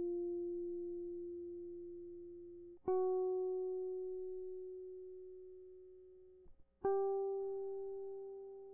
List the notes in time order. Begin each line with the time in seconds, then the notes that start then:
2.88 F#4
6.85 G4